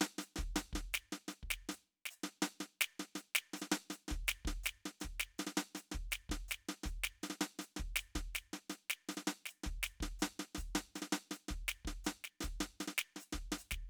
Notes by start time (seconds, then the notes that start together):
0.01 snare
0.18 snare, hi-hat pedal
0.36 snare
0.38 kick, snare
0.56 snare, hi-hat pedal
0.73 kick, snare
0.93 snare, hi-hat pedal
1.12 snare
1.28 snare, hi-hat pedal
1.43 kick
1.51 snare
1.69 snare, hi-hat pedal
2.06 snare
2.10 hi-hat pedal
2.24 snare
2.42 snare, hi-hat pedal
2.60 snare
2.81 snare, hi-hat pedal
2.99 snare
3.15 snare, hi-hat pedal
3.35 snare
3.54 snare, hi-hat pedal
3.62 snare
3.72 snare
3.90 snare, hi-hat pedal
4.08 snare
4.10 kick, snare
4.28 snare, hi-hat pedal
4.45 kick, snare
4.64 snare, hi-hat pedal
4.85 snare
5.00 snare, hi-hat pedal
5.05 kick
5.20 snare
5.39 snare, hi-hat pedal
5.47 snare
5.57 snare
5.75 snare, hi-hat pedal
5.92 kick, snare
6.11 snare, hi-hat pedal
6.29 kick, snare
6.48 snare, hi-hat pedal
6.69 snare
6.83 kick, snare, hi-hat pedal
7.04 snare
7.23 snare, hi-hat pedal
7.30 snare
7.41 snare
7.59 snare, hi-hat pedal
7.76 kick, snare
7.96 snare, hi-hat pedal
8.15 kick, snare
8.35 snare, hi-hat pedal
8.53 snare
8.70 snare, hi-hat pedal
8.90 snare
9.09 snare, hi-hat pedal
9.17 snare
9.27 snare
9.46 snare, hi-hat pedal
9.64 kick, snare
9.83 snare, hi-hat pedal
10.00 kick, snare
10.19 snare, hi-hat pedal
10.39 snare
10.55 kick, snare, hi-hat pedal
10.75 snare
10.95 snare, hi-hat pedal
11.02 snare
11.12 snare
11.31 snare, hi-hat pedal
11.48 kick, snare
11.68 snare, hi-hat pedal
11.85 kick, snare
12.04 snare, hi-hat pedal
12.24 snare
12.41 snare, hi-hat pedal
12.42 kick, snare
12.60 snare
12.80 snare, hi-hat pedal
12.88 snare
12.98 snare
13.16 snare
13.20 hi-hat pedal
13.33 kick, snare
13.52 snare
13.58 hi-hat pedal
13.71 kick, snare